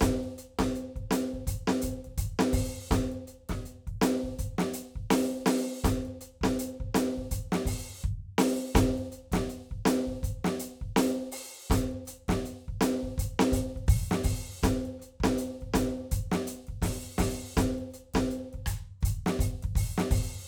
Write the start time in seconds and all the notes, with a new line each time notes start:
0.01 open hi-hat, kick, snare, hi-hat pedal
0.23 closed hi-hat
0.38 closed hi-hat
0.59 kick, snare, closed hi-hat
0.75 closed hi-hat
0.96 kick, closed hi-hat
1.11 closed hi-hat, snare
1.34 kick, closed hi-hat
1.47 closed hi-hat, kick
1.68 snare
1.82 closed hi-hat, kick
2.05 kick, closed hi-hat
2.18 closed hi-hat, kick
2.25 hi-hat pedal
2.39 snare
2.53 open hi-hat, kick
2.91 closed hi-hat, kick, snare, hi-hat pedal
3.12 closed hi-hat
3.27 closed hi-hat
3.49 kick, snare, closed hi-hat
3.66 closed hi-hat
3.87 kick, closed hi-hat
4.02 closed hi-hat, snare
4.24 kick, closed hi-hat
4.39 closed hi-hat, kick
4.59 snare
4.74 closed hi-hat
4.96 kick
5.11 open hi-hat, snare
5.39 kick
5.46 open hi-hat, snare
5.84 closed hi-hat, kick, snare, hi-hat pedal
6.05 closed hi-hat
6.21 closed hi-hat
6.41 kick, snare, closed hi-hat
6.59 closed hi-hat
6.80 kick
6.95 closed hi-hat, snare
7.18 kick
7.31 closed hi-hat, kick
7.52 snare
7.66 open hi-hat, kick
8.01 kick, hi-hat pedal
8.08 crash, ride
8.38 open hi-hat, snare
8.75 open hi-hat, kick, snare, hi-hat pedal
8.95 kick, closed hi-hat
9.12 closed hi-hat
9.32 kick, snare, closed hi-hat
9.50 closed hi-hat
9.71 kick
9.86 closed hi-hat, snare
10.07 kick
10.23 closed hi-hat, kick
10.45 snare
10.60 closed hi-hat
10.81 kick
10.96 open hi-hat, snare, hi-hat pedal
11.27 kick
11.32 open hi-hat
11.70 open hi-hat, kick, snare
11.74 hi-hat pedal
11.91 closed hi-hat
12.05 closed hi-hat, hi-hat pedal
12.28 kick, snare, closed hi-hat
12.46 closed hi-hat
12.68 kick, closed hi-hat
12.81 closed hi-hat, snare
13.03 kick, closed hi-hat
13.18 closed hi-hat, kick
13.39 snare
13.52 open hi-hat, kick
13.57 hi-hat pedal
13.76 kick, closed hi-hat
13.87 open hi-hat, kick, hi-hat pedal
14.11 snare
14.24 open hi-hat, kick
14.62 closed hi-hat, kick, snare, hi-hat pedal
14.85 closed hi-hat
14.98 closed hi-hat, snare
15.20 kick, snare
15.25 closed hi-hat
15.38 closed hi-hat
15.61 kick, closed hi-hat
15.74 closed hi-hat, kick, snare
16.12 closed hi-hat, kick
16.32 snare
16.47 closed hi-hat
16.67 kick, closed hi-hat
16.82 open hi-hat, kick, snare
17.18 open hi-hat, kick, snare
17.57 open hi-hat, kick, snare, hi-hat pedal
17.78 closed hi-hat
17.90 closed hi-hat, hi-hat pedal
18.14 kick, snare, closed hi-hat
18.31 closed hi-hat
18.53 kick, closed hi-hat
18.66 closed hi-hat, kick, cross-stick
19.01 kick, hi-hat pedal
19.05 closed hi-hat
19.26 snare
19.39 open hi-hat, kick
19.44 hi-hat pedal
19.63 kick, closed hi-hat
19.76 open hi-hat, kick
19.98 snare
20.11 open hi-hat, kick